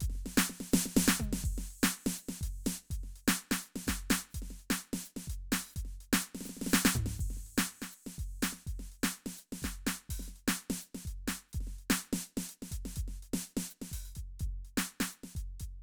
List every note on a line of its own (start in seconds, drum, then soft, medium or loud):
0.01 closed hi-hat medium
0.01 kick soft
0.09 kick soft
0.09 snare soft
0.11 kick soft
0.15 snare soft
0.26 snare soft
0.38 snare loud
0.38 hi-hat pedal medium
0.50 snare soft
0.61 snare soft
0.72 snare loud
0.72 hi-hat pedal medium
0.86 snare medium
0.96 kick soft
0.96 snare loud
0.96 hi-hat pedal medium
1.08 snare loud
1.20 kick soft
1.20 hi-hat pedal medium
1.20 mid tom medium
1.33 snare medium
1.38 hi-hat pedal soft
1.44 kick soft
1.44 crash loud
1.50 kick soft
1.53 kick soft
1.58 snare soft
1.71 closed hi-hat soft
1.83 snare loud
1.96 closed hi-hat soft
2.07 snare medium
2.16 closed hi-hat soft
2.16 hi-hat pedal medium
2.29 snare medium
2.42 open hi-hat medium
2.42 kick soft
2.47 kick soft
2.64 closed hi-hat loud
2.64 snare medium
2.64 hi-hat pedal soft
2.91 closed hi-hat medium
2.91 kick soft
2.99 kick soft
3.04 snare soft
3.16 closed hi-hat soft
3.28 snare loud
3.41 closed hi-hat soft
3.52 snare medium
3.61 closed hi-hat soft
3.61 hi-hat pedal medium
3.76 snare medium
3.88 closed hi-hat medium
3.88 kick soft
3.88 snare medium
4.10 closed hi-hat medium
4.10 snare loud
4.30 hi-hat pedal soft
4.35 closed hi-hat medium
4.35 kick soft
4.42 snare soft
4.51 snare soft
4.60 closed hi-hat soft
4.71 snare medium
4.84 closed hi-hat soft
4.94 snare medium
5.04 closed hi-hat soft
5.04 hi-hat pedal medium
5.17 snare soft
5.28 closed hi-hat medium
5.28 kick soft
5.52 open hi-hat medium
5.52 snare medium
5.71 hi-hat pedal soft
5.76 closed hi-hat medium
5.76 kick soft
5.85 snare soft
6.01 closed hi-hat soft
6.13 snare loud
6.20 hi-hat pedal medium
6.25 closed hi-hat soft
6.35 snare soft
6.41 snare soft
6.41 hi-hat pedal medium
6.46 snare soft
6.50 snare soft
6.57 snare soft
6.62 snare medium
6.67 snare medium
6.67 hi-hat pedal loud
6.74 snare loud
6.85 snare loud
6.94 kick soft
6.94 hi-hat pedal medium
6.94 floor tom loud
7.06 snare medium
7.17 kick soft
7.17 hi-hat pedal medium
7.17 crash medium
7.26 kick soft
7.31 snare soft
7.37 snare soft
7.47 closed hi-hat soft
7.58 snare loud
7.71 closed hi-hat soft
7.82 snare medium
7.91 closed hi-hat soft
7.91 hi-hat pedal medium
8.07 snare soft
8.19 closed hi-hat medium
8.19 kick soft
8.43 closed hi-hat medium
8.43 snare medium
8.53 snare soft
8.67 closed hi-hat medium
8.67 kick soft
8.80 snare soft
8.92 closed hi-hat soft
9.04 snare loud
9.16 closed hi-hat soft
9.26 snare medium
9.36 closed hi-hat soft
9.36 hi-hat pedal medium
9.53 snare medium
9.63 closed hi-hat medium
9.63 kick soft
9.63 snare medium
9.87 closed hi-hat medium
9.87 snare medium
10.10 open hi-hat medium
10.10 kick soft
10.20 snare soft
10.28 snare soft
10.36 closed hi-hat soft
10.48 snare loud
10.60 closed hi-hat soft
10.70 snare medium
10.80 closed hi-hat soft
10.80 hi-hat pedal medium
10.95 snare soft
11.06 closed hi-hat medium
11.06 kick soft
11.28 open hi-hat medium
11.28 snare medium
11.48 hi-hat pedal soft
11.54 closed hi-hat medium
11.54 kick soft
11.61 snare soft
11.67 snare soft
11.79 closed hi-hat soft
11.90 snare loud
12.03 closed hi-hat soft
12.13 snare medium
12.19 hi-hat pedal soft
12.26 closed hi-hat soft
12.38 snare medium
12.49 closed hi-hat medium
12.63 snare soft
12.72 open hi-hat medium
12.72 kick soft
12.86 snare soft
12.86 hi-hat pedal soft
12.96 closed hi-hat medium
12.96 kick soft
13.08 snare soft
13.23 closed hi-hat soft
13.34 snare medium
13.47 closed hi-hat soft
13.57 snare medium
13.69 hi-hat pedal medium
13.82 snare soft
13.92 open hi-hat medium
13.92 kick soft
14.16 closed hi-hat medium
14.16 kick soft
14.40 closed hi-hat medium
14.40 kick soft
14.47 kick soft
14.50 kick soft
14.65 closed hi-hat soft
14.78 snare medium
14.90 closed hi-hat soft
15.01 snare medium
15.10 closed hi-hat soft
15.10 hi-hat pedal medium
15.24 snare soft
15.36 closed hi-hat medium
15.36 kick soft
15.60 closed hi-hat medium
15.60 kick soft